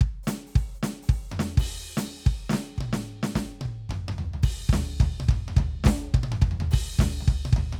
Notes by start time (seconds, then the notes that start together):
0.03 kick
0.23 snare, hi-hat pedal
0.28 closed hi-hat
0.47 open hi-hat
0.56 open hi-hat, kick
0.75 hi-hat pedal
0.83 closed hi-hat, snare
1.03 open hi-hat
1.09 open hi-hat, kick
1.30 hi-hat pedal, mid tom
1.39 snare
1.58 kick, crash
1.90 hi-hat pedal
1.97 closed hi-hat, snare
2.16 open hi-hat
2.25 open hi-hat, kick
2.45 hi-hat pedal
2.50 snare
2.53 snare
2.76 kick, hi-hat pedal
2.81 high tom
2.93 snare
3.23 snare
3.29 hi-hat pedal
3.36 kick, snare
3.61 hi-hat pedal, high tom
3.65 kick
3.90 kick, mid tom
4.08 mid tom
4.13 kick
4.18 floor tom
4.34 floor tom
4.43 kick, crash
4.68 kick, hi-hat pedal
4.73 snare, floor tom
5.00 kick, floor tom
5.20 hi-hat pedal, high tom
5.29 kick, mid tom
5.48 mid tom
5.57 kick, floor tom
5.84 kick, snare, hi-hat pedal
5.87 snare
6.14 kick, high tom
6.24 high tom
6.32 mid tom
6.42 kick, mid tom
6.51 floor tom
6.60 floor tom
6.71 kick, crash
6.97 kick, snare, hi-hat pedal
7.02 floor tom
7.21 floor tom
7.28 kick, floor tom
7.45 hi-hat pedal, high tom
7.53 kick, floor tom
7.73 mid tom